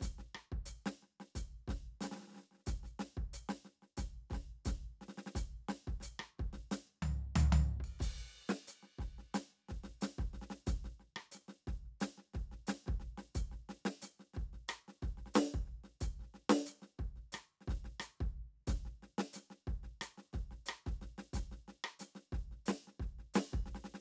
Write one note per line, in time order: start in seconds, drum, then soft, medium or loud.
0.01 kick medium
0.01 snare soft
0.01 hi-hat pedal medium
0.18 snare soft
0.35 cross-stick medium
0.52 kick medium
0.65 snare soft
0.65 hi-hat pedal medium
0.86 snare medium
1.02 snare soft
1.20 snare soft
1.35 kick soft
1.35 snare soft
1.35 hi-hat pedal medium
1.68 kick medium
1.68 snare soft
2.01 snare medium
2.01 hi-hat pedal medium
2.04 snare medium
2.11 snare soft
2.15 snare soft
2.18 snare soft
2.20 snare soft
2.23 snare soft
2.27 snare soft
2.30 snare soft
2.33 snare soft
2.36 snare soft
2.38 snare soft
2.42 snare soft
2.51 snare soft
2.54 snare soft
2.58 snare soft
2.66 kick medium
2.66 snare soft
2.66 hi-hat pedal medium
2.83 snare soft
2.83 hi-hat pedal soft
2.99 snare medium
3.17 kick medium
3.33 hi-hat pedal medium
3.49 snare medium
3.65 snare soft
3.82 snare soft
3.97 kick medium
3.97 snare soft
3.97 hi-hat pedal medium
4.30 kick medium
4.30 snare soft
4.33 snare soft
4.65 kick medium
4.65 snare soft
4.65 hi-hat pedal medium
5.01 snare soft
5.08 snare soft
5.17 snare soft
5.26 snare soft
5.35 kick medium
5.35 snare soft
5.35 hi-hat pedal medium
5.68 snare medium
5.87 kick medium
5.87 snare soft
6.00 snare soft
6.00 hi-hat pedal medium
6.19 cross-stick medium
6.38 kick medium
6.38 snare soft
6.53 snare soft
6.71 snare medium
6.71 hi-hat pedal medium
7.02 floor tom medium
7.36 floor tom loud
7.36 hi-hat pedal medium
7.52 floor tom loud
7.80 kick soft
7.80 ride soft
7.99 kick medium
7.99 hi-hat pedal medium
7.99 crash soft
8.49 snare medium
8.67 snare soft
8.67 hi-hat pedal medium
8.83 snare soft
8.98 kick soft
8.98 snare soft
9.18 snare soft
9.34 snare medium
9.34 hi-hat pedal medium
9.68 kick soft
9.68 snare soft
9.83 snare soft
10.01 snare medium
10.01 hi-hat pedal medium
10.18 kick medium
10.18 snare soft
10.33 snare soft
10.41 snare soft
10.50 snare soft
10.67 kick medium
10.67 snare soft
10.67 hi-hat pedal medium
10.84 snare soft
10.99 snare soft
11.16 cross-stick medium
11.31 snare soft
11.31 hi-hat pedal medium
11.48 snare soft
11.67 kick medium
11.67 snare soft
11.84 snare soft
12.00 snare medium
12.00 hi-hat pedal medium
12.18 snare soft
12.33 kick medium
12.33 snare soft
12.51 snare soft
12.67 snare medium
12.67 hi-hat pedal medium
12.86 kick medium
12.86 snare soft
13.00 snare soft
13.18 snare soft
13.35 kick medium
13.35 snare soft
13.35 hi-hat pedal medium
13.51 snare soft
13.69 snare soft
13.85 snare medium
14.02 snare soft
14.02 hi-hat pedal medium
14.19 snare soft
14.33 kick medium
14.33 snare soft
14.53 snare soft
14.68 cross-stick medium
14.68 hi-hat pedal medium
14.88 snare soft
15.02 kick medium
15.02 snare soft
15.17 snare soft
15.26 snare soft
15.34 snare medium
15.34 hi-hat pedal medium
15.54 kick medium
15.66 snare soft
15.84 snare soft
16.01 kick medium
16.01 snare soft
16.01 hi-hat pedal medium
16.19 snare soft
16.22 snare soft
16.34 snare soft
16.49 snare loud
16.66 snare soft
16.66 hi-hat pedal medium
16.82 snare soft
16.99 kick medium
16.99 snare soft
17.16 snare soft
17.32 cross-stick medium
17.32 hi-hat pedal medium
17.61 snare soft
17.68 kick medium
17.68 snare soft
17.84 snare soft
18.00 cross-stick medium
18.00 hi-hat pedal medium
18.20 kick medium
18.20 snare soft
18.67 kick medium
18.67 snare soft
18.67 hi-hat pedal medium
18.85 snare soft
19.02 snare soft
19.18 snare medium
19.33 snare soft
19.33 hi-hat pedal medium
19.50 snare soft
19.67 kick medium
19.67 snare soft
19.83 snare soft
20.01 cross-stick medium
20.01 hi-hat pedal medium
20.18 snare soft
20.33 kick medium
20.33 snare soft
20.51 snare soft
20.66 cross-stick medium
20.66 hi-hat pedal medium
20.86 kick medium
20.86 snare soft
21.01 snare soft
21.18 snare soft
21.33 kick medium
21.33 snare soft
21.33 hi-hat pedal medium
21.51 snare soft
21.68 snare soft
21.84 cross-stick medium
21.99 snare soft
21.99 hi-hat pedal medium
22.15 snare soft
22.32 kick medium
22.32 snare soft
22.51 snare soft
22.66 snare medium
22.66 hi-hat pedal medium
22.87 snare soft
22.99 kick medium
22.99 snare soft
23.19 snare soft
23.34 snare loud
23.34 hi-hat pedal medium
23.52 kick medium
23.52 snare soft
23.66 snare soft
23.75 snare soft
23.84 snare soft
23.94 snare soft